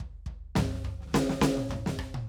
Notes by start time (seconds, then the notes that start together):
0.00 kick, floor tom
0.26 kick, floor tom
0.55 kick, snare, floor tom
0.74 snare
0.84 kick, floor tom
1.00 snare
1.06 snare
1.10 kick, snare
1.14 snare
1.29 snare
1.40 kick, snare
1.57 high tom
1.69 kick, mid tom
1.86 snare
1.98 kick, cross-stick
2.14 high tom